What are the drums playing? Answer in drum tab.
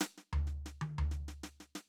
HH |p-----------|
SD |oo-oo--ooooo|
T1 |-----o------|
FT |--o---o-----|